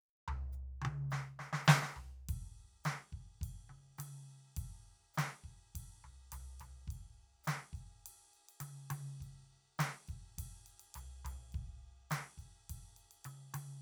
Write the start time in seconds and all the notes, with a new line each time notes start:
0.28 floor tom
0.52 hi-hat pedal
0.82 high tom
0.85 high tom
1.10 snare, hi-hat pedal
1.39 snare
1.53 snare
1.65 snare, hi-hat pedal
1.82 snare
1.96 floor tom
2.29 kick, ride
2.84 snare, hi-hat pedal, ride
3.12 kick
3.41 kick, ride
3.69 high tom
3.98 hi-hat pedal, high tom, ride
4.56 kick, ride
5.14 snare, hi-hat pedal
5.19 ride
5.44 kick
5.75 kick, ride
6.04 floor tom
6.32 floor tom, hi-hat pedal, ride
6.60 floor tom, ride
6.87 kick, ride
7.44 snare, hi-hat pedal, ride
7.73 kick, ride
8.06 ride
8.33 ride
8.49 ride
8.60 hi-hat pedal, high tom, ride
8.90 high tom, ride
9.20 kick, ride
9.78 snare, hi-hat pedal, ride
10.08 kick, ride
10.38 kick, ride
10.66 ride
10.79 ride
10.94 floor tom, hi-hat pedal, ride
11.25 floor tom, ride
11.52 kick, ride
12.10 snare, hi-hat pedal, ride
12.37 kick, ride
12.69 kick, ride
12.96 ride
13.11 ride
13.24 hi-hat pedal, high tom, ride
13.54 high tom, ride